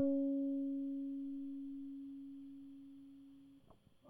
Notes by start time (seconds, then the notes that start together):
0.00 C#4